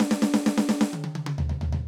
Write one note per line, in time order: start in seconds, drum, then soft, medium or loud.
0.00 snare loud
0.11 snare loud
0.22 snare loud
0.34 snare loud
0.46 snare loud
0.58 snare loud
0.69 snare loud
0.81 snare loud
0.93 high tom loud
1.04 high tom loud
1.15 high tom loud
1.26 high tom loud
1.38 floor tom loud
1.49 floor tom loud
1.61 floor tom loud
1.72 floor tom loud